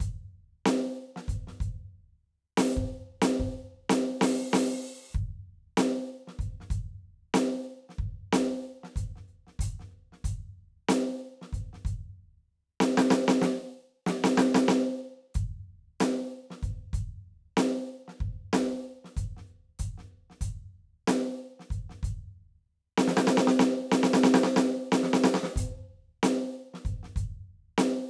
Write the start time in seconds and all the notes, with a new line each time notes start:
0.01 closed hi-hat, kick
0.66 closed hi-hat, snare
1.17 snare
1.29 closed hi-hat, kick
1.48 snare
1.61 closed hi-hat, kick
2.58 open hi-hat, snare
2.75 kick, hi-hat pedal
3.23 closed hi-hat, snare
3.40 kick
3.90 open hi-hat, snare
4.22 open hi-hat, snare
4.54 open hi-hat, snare
5.11 kick, hi-hat pedal
5.15 kick
5.78 closed hi-hat, snare
6.11 closed hi-hat
6.28 snare
6.40 closed hi-hat, kick, snare
6.61 snare
6.71 closed hi-hat, kick
7.35 closed hi-hat, snare
7.90 snare
7.99 kick
8.34 closed hi-hat, snare
8.62 closed hi-hat, snare
8.84 snare
8.97 closed hi-hat, kick
9.16 snare
9.29 closed hi-hat
9.48 snare
9.60 closed hi-hat, kick
9.80 snare
9.90 snare, closed hi-hat
10.13 snare
10.25 closed hi-hat, kick
10.89 closed hi-hat, snare
11.42 snare
11.53 closed hi-hat, kick
11.74 snare
11.86 closed hi-hat, kick
12.81 snare
12.98 snare
13.11 snare
13.29 snare
13.43 snare
14.07 snare
14.25 snare
14.38 snare
14.55 snare
14.69 snare
15.35 closed hi-hat, kick
16.01 closed hi-hat, snare
16.33 closed hi-hat
16.51 snare
16.63 closed hi-hat, kick, crash
16.94 closed hi-hat, kick
17.58 closed hi-hat, snare
17.85 snare
17.90 closed hi-hat
18.09 snare
18.21 kick, closed hi-hat
18.54 closed hi-hat, snare
18.85 closed hi-hat
19.05 snare
19.17 closed hi-hat, kick
19.38 snare
19.48 closed hi-hat
19.80 closed hi-hat, kick
19.99 snare
20.31 snare
20.42 closed hi-hat, kick
21.08 closed hi-hat, snare
21.60 snare
21.71 closed hi-hat, kick
21.90 snare
22.04 closed hi-hat, kick
22.99 snare
23.09 snare
23.18 snare
23.28 snare
23.38 snare
23.60 snare
23.93 snare
24.04 snare
24.14 snare
24.35 snare
24.44 snare
24.57 snare
24.93 snare
25.04 snare
25.14 snare
25.25 snare
25.35 snare
25.44 snare
25.57 closed hi-hat, kick
26.24 closed hi-hat, snare
26.57 closed hi-hat
26.75 snare
26.86 closed hi-hat, kick
27.04 snare
27.17 closed hi-hat, kick
27.79 closed hi-hat, snare